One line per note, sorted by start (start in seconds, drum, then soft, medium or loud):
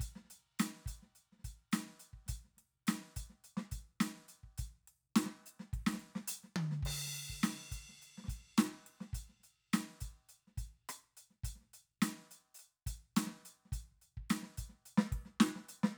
0.01 closed hi-hat medium
0.01 kick soft
0.16 snare soft
0.25 snare soft
0.31 closed hi-hat soft
0.60 closed hi-hat loud
0.60 snare medium
0.87 closed hi-hat medium
0.87 kick soft
1.03 snare soft
1.16 closed hi-hat soft
1.33 snare soft
1.40 snare soft
1.45 closed hi-hat medium
1.45 kick soft
1.73 closed hi-hat medium
1.73 snare medium
1.73 hi-hat pedal soft
1.87 snare soft
2.00 closed hi-hat soft
2.14 kick soft
2.27 closed hi-hat medium
2.27 kick soft
2.27 snare soft
2.45 snare soft
2.58 snare soft
2.58 closed hi-hat soft
2.60 snare soft
2.88 closed hi-hat medium
2.88 snare loud
3.01 snare soft
3.17 closed hi-hat medium
3.17 kick soft
3.30 snare soft
3.45 closed hi-hat soft
3.58 snare medium
3.72 closed hi-hat medium
3.72 kick soft
4.01 closed hi-hat medium
4.01 snare loud
4.14 snare soft
4.29 closed hi-hat soft
4.44 kick soft
4.44 snare soft
4.59 closed hi-hat medium
4.59 kick soft
4.88 closed hi-hat soft
5.17 closed hi-hat medium
5.17 snare loud
5.27 snare soft
5.47 open hi-hat medium
5.47 hi-hat pedal medium
5.60 snare soft
5.74 kick soft
5.74 closed hi-hat soft
5.80 kick soft
5.83 kick soft
5.88 snare loud
5.94 snare soft
6.01 closed hi-hat soft
6.16 snare medium
6.29 closed hi-hat loud
6.45 snare soft
6.57 high tom loud
6.72 snare soft
6.84 kick soft
6.84 crash loud
6.89 kick soft
6.92 kick soft
7.08 snare soft
7.15 closed hi-hat soft
7.31 kick soft
7.44 open hi-hat medium
7.44 snare loud
7.57 snare soft
7.73 closed hi-hat medium
7.73 kick soft
7.90 snare soft
8.03 closed hi-hat soft
8.19 snare soft
8.25 snare soft
8.29 closed hi-hat soft
8.29 kick soft
8.59 open hi-hat medium
8.59 snare loud
8.87 closed hi-hat soft
9.01 snare soft
9.14 closed hi-hat medium
9.14 kick soft
9.30 snare soft
9.40 closed hi-hat soft
9.40 snare soft
9.74 closed hi-hat medium
9.74 snare loud
10.01 closed hi-hat medium
10.01 kick soft
10.30 closed hi-hat soft
10.48 snare soft
10.52 snare soft
10.58 closed hi-hat medium
10.58 kick soft
10.58 snare soft
10.90 closed hi-hat medium
10.90 cross-stick medium
11.18 closed hi-hat soft
11.31 snare soft
11.45 closed hi-hat medium
11.45 kick soft
11.56 snare soft
11.62 snare soft
11.74 closed hi-hat soft
12.03 closed hi-hat medium
12.03 snare loud
12.32 closed hi-hat soft
12.55 hi-hat pedal medium
12.60 closed hi-hat soft
12.87 closed hi-hat medium
12.87 kick soft
13.17 closed hi-hat medium
13.17 snare loud
13.28 snare soft
13.46 closed hi-hat soft
13.66 snare soft
13.73 closed hi-hat medium
13.73 kick soft
13.93 kick soft
14.03 closed hi-hat soft
14.18 kick soft
14.31 closed hi-hat medium
14.31 snare loud
14.43 snare soft
14.58 open hi-hat medium
14.58 kick soft
14.70 snare soft
14.86 closed hi-hat soft
14.99 snare loud
15.13 kick soft
15.13 closed hi-hat soft
15.19 kick soft
15.26 snare soft
15.41 snare loud
15.57 snare soft
15.70 closed hi-hat medium
15.84 snare medium